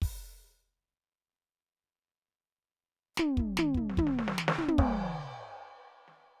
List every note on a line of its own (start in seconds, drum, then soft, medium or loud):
0.02 open hi-hat medium
0.02 kick medium
3.14 snare loud
3.14 hi-hat pedal soft
3.18 floor tom loud
3.37 kick medium
3.37 floor tom soft
3.57 snare loud
3.57 floor tom loud
3.74 kick soft
3.74 floor tom medium
3.90 snare soft
3.97 kick medium
3.97 floor tom loud
4.07 snare soft
4.19 snare medium
4.28 snare medium
4.38 snare loud
4.48 snare loud
4.58 floor tom loud
4.78 kick medium
4.78 crash loud
6.08 snare soft